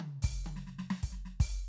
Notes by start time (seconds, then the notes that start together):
0.00 high tom
0.22 open hi-hat, kick
0.44 hi-hat pedal, high tom
0.56 snare
0.67 snare
0.79 snare
0.90 snare
1.03 kick, open hi-hat
1.09 snare, hi-hat pedal
1.18 kick
1.25 snare
1.40 open hi-hat, kick